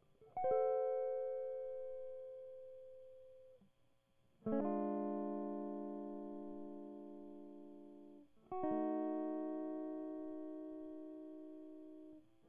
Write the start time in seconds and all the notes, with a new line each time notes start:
0.37 F#5
0.44 C5
0.50 A4
4.62 G#3 D4 F4
8.52 F#4
8.64 D#4
8.72 A3